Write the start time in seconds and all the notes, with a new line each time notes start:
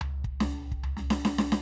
0.01 floor tom
0.24 kick
0.40 snare, floor tom
0.49 snare
0.72 kick
0.83 floor tom
0.97 snare
1.10 snare
1.25 snare
1.38 snare
1.52 snare